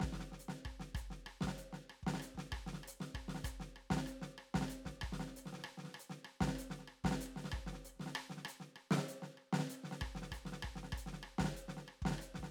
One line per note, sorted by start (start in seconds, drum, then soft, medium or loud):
0.01 kick soft
0.01 snare medium
0.13 snare soft
0.20 snare soft
0.32 snare soft
0.40 hi-hat pedal soft
0.49 snare soft
0.65 kick soft
0.65 cross-stick medium
0.80 snare soft
0.95 kick soft
0.95 cross-stick medium
0.95 hi-hat pedal soft
1.11 snare soft
1.27 cross-stick medium
1.41 kick soft
1.41 snare medium
1.48 snare medium
1.58 snare soft
1.58 hi-hat pedal soft
1.73 snare soft
1.90 cross-stick soft
2.03 kick soft
2.03 snare medium
2.14 snare soft
2.20 cross-stick soft
2.20 hi-hat pedal medium
2.35 kick soft
2.35 snare soft
2.52 kick soft
2.52 cross-stick medium
2.67 snare soft
2.73 snare soft
2.84 cross-stick soft
2.88 hi-hat pedal medium
3.01 snare soft
3.15 kick soft
3.15 cross-stick medium
3.29 snare soft
3.35 snare soft
3.44 kick soft
3.44 cross-stick medium
3.44 hi-hat pedal medium
3.60 snare soft
3.76 cross-stick soft
3.91 kick soft
3.91 snare medium
3.97 snare medium
4.07 cross-stick soft
4.07 hi-hat pedal soft
4.22 snare soft
4.38 cross-stick soft
4.55 kick soft
4.55 snare medium
4.61 snare soft
4.69 cross-stick soft
4.69 hi-hat pedal medium
4.86 kick soft
4.86 snare soft
5.02 kick soft
5.02 cross-stick medium
5.13 snare soft
5.20 snare soft
5.27 snare soft
5.31 snare soft
5.36 cross-stick soft
5.36 hi-hat pedal soft
5.46 snare soft
5.53 snare soft
5.59 snare soft
5.64 cross-stick medium
5.78 snare soft
5.84 snare soft
5.88 snare soft
5.95 cross-stick medium
6.00 hi-hat pedal soft
6.10 snare soft
6.25 cross-stick medium
6.41 kick soft
6.41 snare medium
6.48 snare soft
6.56 cross-stick soft
6.56 hi-hat pedal medium
6.62 cross-stick soft
6.70 snare soft
6.79 snare soft
6.88 cross-stick soft
7.04 kick soft
7.04 snare medium
7.11 snare medium
7.19 snare soft
7.19 hi-hat pedal medium
7.26 cross-stick soft
7.31 snare soft
7.36 snare soft
7.45 snare soft
7.52 kick soft
7.52 cross-stick medium
7.67 snare soft
7.73 snare soft
7.82 snare soft
7.82 hi-hat pedal soft
7.90 cross-stick soft
7.96 snare soft
8.00 snare soft
8.07 snare soft
8.15 cross-stick medium
8.30 snare soft
8.37 snare soft
8.45 cross-stick medium
8.45 hi-hat pedal medium
8.60 snare soft
8.76 cross-stick soft
8.91 snare medium
8.97 snare medium
9.06 cross-stick soft
9.06 hi-hat pedal medium
9.13 snare soft
9.23 snare soft
9.38 cross-stick soft
9.53 snare medium
9.59 snare medium
9.68 cross-stick soft
9.68 hi-hat pedal medium
9.74 cross-stick soft
9.81 snare soft
9.84 snare soft
9.92 snare soft
10.01 kick soft
10.01 cross-stick medium
10.15 snare soft
10.22 snare soft
10.29 kick soft
10.29 cross-stick medium
10.29 snare soft
10.34 hi-hat pedal soft
10.46 snare soft
10.53 snare soft
10.63 kick soft
10.63 cross-stick medium
10.76 snare soft
10.83 snare soft
10.93 kick soft
10.93 cross-stick medium
10.98 hi-hat pedal soft
11.07 snare soft
11.13 snare soft
11.23 cross-stick medium
11.39 kick soft
11.39 snare medium
11.45 snare medium
11.54 cross-stick soft
11.54 hi-hat pedal soft
11.69 snare soft
11.77 snare soft
11.88 cross-stick soft
12.02 kick soft
12.02 snare medium
12.08 kick soft
12.08 snare soft
12.19 cross-stick soft
12.19 hi-hat pedal soft
12.24 cross-stick soft
12.35 snare soft
12.39 kick soft
12.43 snare soft